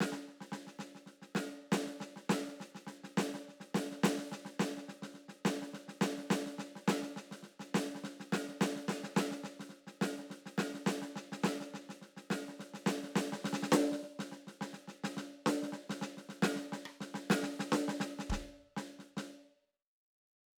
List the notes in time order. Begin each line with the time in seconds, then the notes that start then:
0.00 snare
0.12 snare
0.28 snare
0.40 snare
0.52 snare
0.67 snare
0.79 snare
0.95 snare
1.06 snare
1.22 snare
1.35 snare
1.72 snare
1.86 snare
2.00 snare
2.16 snare
2.29 snare
2.48 snare
2.60 snare
2.75 snare
2.87 snare
3.03 snare
3.17 snare
3.34 snare
3.48 snare
3.60 snare
3.74 snare
3.91 snare
4.03 snare
4.18 snare
4.32 snare
4.45 snare
4.59 snare
4.77 snare
4.88 snare
5.02 snare
5.14 snare
5.28 snare
5.45 snare
5.62 snare
5.73 snare
5.88 snare
6.01 snare
6.18 snare
6.30 snare
6.46 snare
6.58 snare
6.75 snare
6.88 snare
7.02 snare
7.16 snare
7.31 snare
7.43 snare
7.59 snare
7.74 snare
7.95 snare
8.03 snare
8.20 snare
8.32 snare
8.48 snare
8.61 snare
8.75 snare
8.88 snare
9.03 snare
9.16 snare
9.31 snare
9.43 snare
9.59 snare
9.69 snare
9.87 snare
10.01 snare
10.18 snare
10.30 snare
10.46 snare
10.58 snare
10.74 snare
10.86 snare
11.02 snare
11.16 snare
11.32 snare
11.43 snare
11.60 snare
11.74 snare
11.89 snare
12.01 snare
12.16 snare
12.30 snare
12.48 snare
12.59 snare
12.74 snare
12.86 snare
13.03 snare
13.15 snare
13.32 snare
13.44 snare
13.53 snare
13.63 snare
13.72 snare
13.92 snare
14.03 snare
14.19 snare
14.31 snare
14.47 snare
14.61 snare
14.73 snare
14.88 snare
15.04 snare
15.17 snare
15.46 snare
15.63 snare
15.72 snare
15.89 snare
16.01 snare
16.17 snare
16.29 snare
16.42 snare
16.56 snare
16.72 snare
16.85 cross-stick
17.00 snare
17.14 snare
17.30 snare
17.43 snare
17.59 snare
17.72 snare
17.88 snare
18.00 snare
18.19 snare
18.30 kick, snare
18.76 snare
18.99 snare
19.17 snare